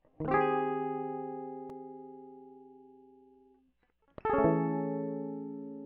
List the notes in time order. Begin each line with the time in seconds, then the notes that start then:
0.22 D#3
0.29 C4 G4
0.34 G#4
4.26 A4
4.30 C#4 G#4
4.46 E3